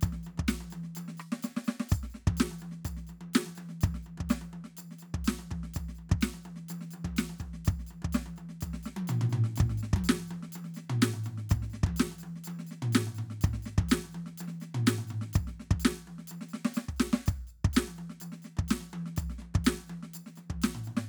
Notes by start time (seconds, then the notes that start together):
0.01 kick, high tom, percussion
0.12 snare
0.23 high tom, percussion
0.38 kick, high tom
0.48 snare, percussion
0.60 high tom
0.70 high tom, percussion
0.83 snare
0.95 high tom, percussion
1.08 snare
1.17 cross-stick, percussion
1.32 snare
1.43 snare, percussion
1.57 snare
1.65 snare, percussion
1.80 snare
1.89 kick, percussion
1.93 percussion
2.03 snare
2.10 percussion
2.14 snare
2.27 kick, high tom
2.37 snare, percussion
2.51 high tom
2.59 high tom, percussion
2.71 snare
2.85 kick, high tom, percussion
2.97 snare
3.07 high tom, percussion
3.21 high tom
3.34 snare, percussion
3.46 kick, high tom
3.55 high tom, percussion
3.69 snare
3.81 kick, high tom, percussion
3.94 snare
4.03 high tom, percussion
4.17 kick, high tom
4.29 snare, percussion
4.41 high tom
4.53 high tom
4.64 snare
4.77 high tom, percussion
4.91 snare
4.99 high tom, percussion
5.14 kick, high tom
5.24 snare, percussion
5.39 high tom
5.51 kick, high tom
5.63 snare
5.74 kick, high tom, percussion
5.89 snare
5.95 high tom, percussion
6.09 kick, high tom
6.21 snare, percussion
6.34 high tom
6.43 high tom, percussion
6.56 snare
6.69 high tom, percussion
6.81 snare
6.91 high tom, percussion
7.04 kick, high tom
7.17 snare, percussion
7.29 high tom
7.38 kick, high tom, percussion
7.53 snare
7.65 kick, high tom, percussion
7.79 snare
7.87 percussion
7.91 high tom
8.02 kick, high tom
8.12 snare, percussion
8.26 high tom
8.36 high tom, percussion
8.49 snare
8.61 kick, high tom, percussion
8.73 snare
8.83 snare, percussion
8.96 high tom
9.07 floor tom, percussion
9.21 floor tom
9.29 floor tom, percussion
9.44 snare
9.56 floor tom, percussion
9.60 kick
9.70 snare
9.78 percussion
9.83 snare
9.93 kick, high tom
10.04 percussion
10.09 snare
10.20 high tom
10.27 high tom, percussion
10.43 snare
10.52 high tom, percussion
10.64 snare
10.74 snare, percussion
10.90 floor tom
11.02 snare, percussion
11.14 floor tom
11.24 floor tom, percussion
11.38 snare
11.49 kick, floor tom, percussion
11.62 snare
11.70 snare, percussion
11.83 kick, high tom
11.96 snare, percussion
12.11 high tom
12.18 percussion
12.23 high tom
12.36 snare
12.44 high tom, percussion
12.59 snare
12.67 percussion
12.71 snare
12.82 floor tom
12.93 snare, percussion
13.07 floor tom
13.15 floor tom, percussion
13.30 snare
13.41 kick, floor tom, percussion
13.53 snare
13.62 snare, percussion
13.78 kick, high tom
13.89 snare, percussion
14.04 high tom
14.11 high tom, percussion
14.26 snare
14.38 high tom, percussion
14.48 snare
14.60 snare, percussion
14.75 floor tom
14.87 snare, percussion
14.98 floor tom
15.04 kick, percussion
15.10 floor tom
15.21 snare
15.33 kick, high tom, percussion
15.47 snare
15.60 snare
15.71 kick, high tom
15.80 percussion
15.85 snare
15.96 high tom
16.07 high tom
16.18 snare
16.27 high tom, percussion
16.41 snare
16.49 percussion
16.54 snare
16.65 snare
16.74 snare, percussion
16.89 kick
16.96 snare, percussion
17.13 snare
17.26 kick, percussion
17.47 percussion
17.64 kick
17.73 snare, percussion
17.88 high tom
17.95 high tom, percussion
18.10 snare
18.20 high tom, percussion
18.32 snare
18.42 snare, percussion
18.57 kick, high tom
18.68 snare, percussion
18.81 high tom
18.89 high tom, percussion
19.06 snare
19.16 kick, high tom, percussion
19.30 snare
19.38 snare, high tom
19.54 kick, high tom
19.64 snare, percussion
19.78 high tom
19.86 high tom, percussion
20.03 snare
20.14 high tom, percussion
20.26 snare
20.36 snare, high tom, percussion
20.50 kick, high tom
20.62 snare, percussion
20.75 floor tom
20.82 kick, percussion
20.87 floor tom
20.97 snare